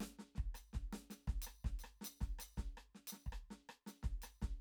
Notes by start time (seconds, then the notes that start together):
0.01 snare
0.19 snare
0.36 kick, snare
0.55 cross-stick, hi-hat pedal
0.74 kick, snare
0.93 snare
1.11 snare, hi-hat pedal
1.28 kick, snare
1.42 hi-hat pedal
1.47 cross-stick
1.65 kick, snare
1.80 hi-hat pedal
1.84 cross-stick
2.02 snare, hi-hat pedal
2.21 kick, snare
2.39 cross-stick, hi-hat pedal
2.58 kick, snare
2.78 cross-stick
2.95 snare
3.08 hi-hat pedal
3.13 snare
3.27 kick
3.33 cross-stick
3.51 snare
3.70 cross-stick
3.87 snare, hi-hat pedal
4.03 kick, snare
4.23 cross-stick, hi-hat pedal
4.42 kick, snare